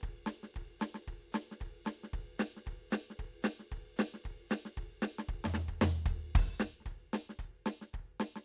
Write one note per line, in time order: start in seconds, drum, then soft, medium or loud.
0.01 kick medium
0.01 ride soft
0.26 snare medium
0.26 hi-hat pedal medium
0.26 ride medium
0.43 snare soft
0.54 kick soft
0.54 ride soft
0.80 snare medium
0.80 hi-hat pedal medium
0.80 ride soft
0.94 snare soft
1.07 kick soft
1.07 ride soft
1.32 snare medium
1.32 hi-hat pedal medium
1.32 ride medium
1.51 snare soft
1.61 kick soft
1.61 ride soft
1.85 snare medium
1.85 hi-hat pedal medium
1.85 ride medium
2.03 snare soft
2.13 kick medium
2.13 ride medium
2.38 snare medium
2.38 hi-hat pedal medium
2.38 ride medium
2.56 snare soft
2.66 kick soft
2.66 ride soft
2.90 snare medium
2.90 hi-hat pedal medium
2.90 ride medium
3.10 snare soft
3.19 kick soft
3.19 ride soft
3.42 snare medium
3.42 hi-hat pedal medium
3.42 ride medium
3.59 snare soft
3.72 kick soft
3.72 ride medium
3.96 snare loud
3.96 hi-hat pedal medium
3.96 ride medium
4.14 snare soft
4.24 kick soft
4.24 ride soft
4.50 snare medium
4.50 hi-hat pedal medium
4.50 ride medium
4.65 snare soft
4.77 kick soft
4.77 ride soft
5.02 snare medium
5.02 hi-hat pedal medium
5.02 ride medium
5.19 snare medium
5.29 kick medium
5.29 ride soft
5.44 snare medium
5.44 floor tom medium
5.53 snare medium
5.53 floor tom medium
5.53 hi-hat pedal medium
5.68 kick soft
5.81 snare loud
5.81 floor tom loud
6.06 kick medium
6.06 hi-hat pedal medium
6.06 ride medium
6.35 open hi-hat medium
6.35 kick loud
6.60 open hi-hat medium
6.60 snare medium
6.60 hi-hat pedal soft
6.80 snare soft
6.86 kick soft
6.86 closed hi-hat soft
7.13 closed hi-hat loud
7.13 snare medium
7.29 snare soft
7.39 closed hi-hat soft
7.39 kick soft
7.66 closed hi-hat medium
7.66 snare medium
7.81 snare soft
7.93 kick soft
7.93 closed hi-hat soft
8.20 closed hi-hat medium
8.20 snare medium
8.36 snare soft